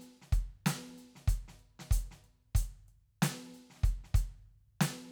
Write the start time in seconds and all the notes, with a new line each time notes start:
0.01 closed hi-hat
0.22 snare
0.32 closed hi-hat, kick
0.66 closed hi-hat, snare
0.98 closed hi-hat
1.15 snare
1.28 closed hi-hat, kick
1.48 snare
1.59 closed hi-hat
1.79 snare
1.91 closed hi-hat, kick
2.11 snare
2.23 snare, closed hi-hat
2.55 closed hi-hat, kick
2.88 closed hi-hat
3.22 closed hi-hat, snare
3.54 closed hi-hat
3.70 snare
3.73 snare
3.76 snare
3.83 closed hi-hat, kick
4.04 snare
4.14 closed hi-hat, kick
4.81 closed hi-hat, snare